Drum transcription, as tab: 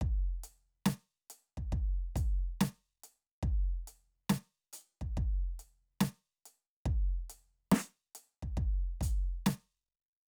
CC |------------x-----------|------------------------|
HH |---x-----x-----x-----x--|---x-----x-----x-----x--|
SD |------o-----------o-----|------o-----------o-----|
BD |o----------go--o--------|o----------oo-----------|

CC |------------------------|
HH |---x-----x-----x--------|
SD |------o-----------o-----|
BD |o----------oo--o--------|